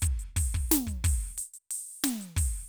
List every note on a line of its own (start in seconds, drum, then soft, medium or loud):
0.01 closed hi-hat loud
0.01 kick medium
0.01 hi-hat pedal medium
0.19 closed hi-hat medium
0.37 open hi-hat loud
0.37 kick medium
0.55 kick medium
0.69 closed hi-hat loud
0.69 snare loud
0.69 hi-hat pedal medium
0.87 closed hi-hat medium
0.87 kick soft
1.04 open hi-hat loud
1.04 kick medium
1.38 open hi-hat loud
1.38 hi-hat pedal medium
1.54 closed hi-hat medium
1.71 open hi-hat loud
2.03 closed hi-hat loud
2.03 snare loud
2.03 hi-hat pedal medium
2.21 closed hi-hat medium
2.36 open hi-hat loud
2.36 kick medium
2.36 hi-hat pedal soft